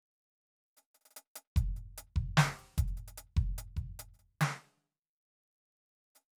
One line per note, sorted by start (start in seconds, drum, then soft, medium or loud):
0.77 hi-hat pedal medium
0.95 closed hi-hat soft
1.01 closed hi-hat soft
1.05 closed hi-hat soft
1.11 closed hi-hat soft
1.16 closed hi-hat loud
1.36 closed hi-hat loud
1.56 kick medium
1.56 closed hi-hat medium
1.76 closed hi-hat soft
1.98 closed hi-hat loud
2.16 kick medium
2.16 closed hi-hat soft
2.37 snare loud
2.59 closed hi-hat soft
2.78 closed hi-hat loud
2.78 kick medium
2.88 closed hi-hat soft
2.97 closed hi-hat soft
3.08 closed hi-hat medium
3.18 closed hi-hat loud
3.37 kick medium
3.37 closed hi-hat soft
3.58 closed hi-hat loud
3.77 kick soft
3.77 closed hi-hat soft
3.99 closed hi-hat loud
4.14 hi-hat pedal soft
4.19 closed hi-hat soft
4.41 closed hi-hat loud
4.41 snare loud
6.15 hi-hat pedal medium